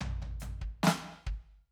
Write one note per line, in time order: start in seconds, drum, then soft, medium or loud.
0.01 floor tom loud
0.01 high tom medium
0.22 floor tom medium
0.22 high tom medium
0.40 floor tom medium
0.40 hi-hat pedal medium
0.40 high tom medium
0.61 kick medium
0.83 snare loud
0.87 snare loud
1.27 kick medium